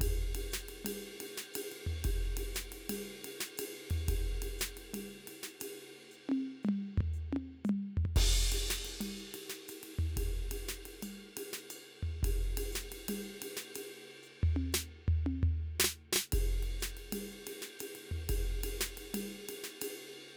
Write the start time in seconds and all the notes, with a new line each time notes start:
0.01 kick, ride
0.35 ride
0.52 snare, hi-hat pedal
0.69 ride
0.85 mid tom, ride
1.20 ride
1.38 snare
1.54 hi-hat pedal, ride
1.72 ride
1.87 floor tom
2.04 kick, ride
2.37 ride
2.55 snare, hi-hat pedal
2.72 ride
2.90 mid tom, ride
3.05 hi-hat pedal
3.25 ride
3.41 snare
3.58 hi-hat pedal, ride
3.90 floor tom, ride
4.08 kick, ride
4.42 ride
4.59 snare, hi-hat pedal
4.77 ride
4.94 mid tom, ride
5.09 hi-hat pedal
5.28 ride
5.43 snare
5.60 hi-hat pedal, ride
6.11 hi-hat pedal
6.29 high tom
6.32 high tom
6.63 hi-hat pedal, mid tom
6.69 mid tom
6.98 floor tom
7.01 floor tom
7.14 hi-hat pedal
7.33 high tom
7.36 high tom
7.65 hi-hat pedal, mid tom
7.70 mid tom
7.97 floor tom
8.05 floor tom
8.16 kick, ride
8.52 ride
8.67 snare, hi-hat pedal
8.85 ride
9.01 mid tom, ride
9.17 hi-hat pedal
9.34 ride
9.50 snare
9.68 hi-hat pedal, ride
9.83 ride
9.99 floor tom
10.17 kick, ride
10.51 ride
10.68 snare, hi-hat pedal
10.86 ride
11.03 mid tom, ride bell
11.17 hi-hat pedal
11.37 ride
11.53 snare
11.70 hi-hat pedal, ride bell
12.03 floor tom
12.23 kick, ride
12.57 ride
12.73 snare, hi-hat pedal
12.92 ride
13.09 mid tom, ride
13.22 hi-hat pedal
13.42 ride
13.57 snare
13.75 hi-hat pedal, ride
14.23 hi-hat pedal
14.43 floor tom
14.56 high tom
14.73 snare, hi-hat pedal
15.08 floor tom
15.26 high tom
15.43 floor tom
15.80 snare
15.84 snare
16.13 snare
16.16 snare
16.32 kick, ride
16.63 ride
16.81 snare, hi-hat pedal
16.97 ride
17.13 mid tom, ride
17.29 hi-hat pedal
17.47 ride
17.62 snare
17.79 hi-hat pedal, ride
17.95 ride
18.11 floor tom
18.29 kick, ride
18.64 ride
18.81 snare, hi-hat pedal
18.97 ride
19.14 mid tom, ride
19.30 hi-hat pedal
19.49 ride
19.64 snare
19.81 hi-hat pedal, ride
20.28 hi-hat pedal